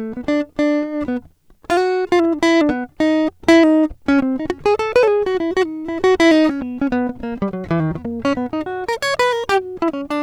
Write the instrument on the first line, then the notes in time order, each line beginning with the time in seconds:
acoustic guitar
0.02 A3
0.15 B3
0.30 D4
0.60 D4
1.10 B3
1.71 F4
1.83 F#4
2.13 F4
2.26 E4
2.35 D4
2.44 E4
2.63 D4
2.70 B3
3.02 D#4
3.50 E4
3.65 D#4
4.10 C#4
4.21 C4
4.67 G#4
4.81 A4
4.97 B4
5.09 G#4
5.19 G#4
5.28 F#4
5.38 E4
5.58 F#4
5.68 D#4
5.90 E4
6.05 F#4
6.21 E4
6.33 D#4
6.51 C#4
6.62 B3
6.83 C#4
6.94 B3
7.25 A#3
7.43 G3
7.55 F#3
7.72 E3
8.07 A#3
8.16 A3
8.26 C#4
8.39 B3
8.54 D#4
8.68 F#4
8.90 A#4
9.04 C#5
9.21 B4
9.34 A#4
9.51 G4
9.84 E4
9.95 C#4
10.12 D4